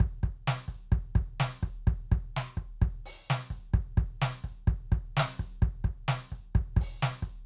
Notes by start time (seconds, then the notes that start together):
0.01 kick
0.24 kick
0.48 snare
0.64 snare
0.69 kick
0.93 kick
1.16 kick
1.41 snare
1.56 snare
1.64 kick
1.88 kick
2.12 kick
2.37 snare
2.54 kick, snare
2.82 kick
3.06 open hi-hat
3.29 snare, hi-hat pedal
3.39 snare
3.47 snare
3.51 kick
3.75 kick
3.98 kick
4.22 snare
4.29 snare
4.45 kick, snare
4.68 kick
4.93 kick
5.18 snare
5.20 snare
5.40 kick
5.63 kick
5.85 kick
6.09 snare
6.33 kick
6.56 kick
6.77 kick
6.81 open hi-hat
7.02 snare, hi-hat pedal
7.19 kick, snare